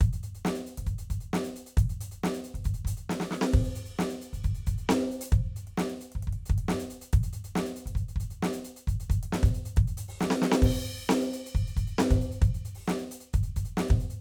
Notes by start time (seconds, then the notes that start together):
0.01 closed hi-hat, kick
0.13 closed hi-hat
0.23 closed hi-hat
0.35 closed hi-hat
0.45 snare
0.55 closed hi-hat
0.67 closed hi-hat
0.78 kick, closed hi-hat
0.87 closed hi-hat, kick
0.99 closed hi-hat
1.10 closed hi-hat, kick
1.21 closed hi-hat
1.34 snare
1.45 closed hi-hat
1.56 closed hi-hat
1.67 closed hi-hat
1.77 kick, closed hi-hat
1.90 closed hi-hat
2.01 closed hi-hat
2.12 closed hi-hat
2.24 snare
2.34 closed hi-hat
2.44 closed hi-hat
2.54 kick, closed hi-hat
2.65 closed hi-hat, kick
2.74 closed hi-hat
2.85 closed hi-hat, kick
2.97 closed hi-hat
3.10 snare
3.20 snare
3.31 snare
3.42 snare
3.53 kick, crash
3.64 closed hi-hat
3.76 closed hi-hat
3.86 closed hi-hat
3.97 kick, snare
4.10 closed hi-hat
4.22 closed hi-hat
4.33 closed hi-hat, kick
4.44 closed hi-hat, kick
4.55 closed hi-hat
4.67 closed hi-hat, kick
4.78 closed hi-hat
4.89 snare
5.01 closed hi-hat
5.12 closed hi-hat
5.21 closed hi-hat
5.32 kick, closed hi-hat
5.44 closed hi-hat
5.56 closed hi-hat
5.67 closed hi-hat
5.78 snare
5.90 closed hi-hat
6.01 closed hi-hat
6.12 kick, closed hi-hat
6.23 closed hi-hat
6.27 kick
6.33 closed hi-hat
6.46 closed hi-hat, kick
6.58 closed hi-hat
6.69 snare
6.80 closed hi-hat
6.90 closed hi-hat
7.02 closed hi-hat
7.13 kick, closed hi-hat
7.23 closed hi-hat
7.33 closed hi-hat
7.45 closed hi-hat
7.56 snare
7.66 closed hi-hat
7.76 closed hi-hat
7.86 kick, closed hi-hat
7.95 closed hi-hat, kick
8.09 closed hi-hat
8.16 kick
8.20 closed hi-hat
8.31 closed hi-hat
8.43 snare
8.53 closed hi-hat
8.65 closed hi-hat
8.77 closed hi-hat
8.88 closed hi-hat, kick
9.00 closed hi-hat
9.10 closed hi-hat, kick
9.23 closed hi-hat
9.33 snare
9.43 closed hi-hat, kick
9.55 closed hi-hat
9.66 closed hi-hat
9.77 kick, closed hi-hat
9.88 closed hi-hat
9.97 closed hi-hat
10.08 open hi-hat
10.20 snare, hi-hat pedal
10.31 snare
10.42 snare
10.52 snare
10.62 kick, crash
10.76 closed hi-hat
10.85 closed hi-hat
10.98 closed hi-hat
11.09 snare
11.21 closed hi-hat
11.34 closed hi-hat
11.46 closed hi-hat
11.55 closed hi-hat, kick
11.67 closed hi-hat
11.77 closed hi-hat, kick
11.87 closed hi-hat
11.99 snare
12.11 closed hi-hat, kick
12.21 closed hi-hat
12.32 closed hi-hat
12.42 closed hi-hat, kick
12.55 closed hi-hat
12.65 closed hi-hat
12.75 open hi-hat
12.88 snare, hi-hat pedal
12.99 closed hi-hat
13.11 closed hi-hat
13.21 closed hi-hat
13.34 closed hi-hat, kick
13.43 closed hi-hat
13.56 closed hi-hat, kick
13.65 closed hi-hat
13.77 snare
13.89 kick, closed hi-hat
14.00 closed hi-hat
14.10 closed hi-hat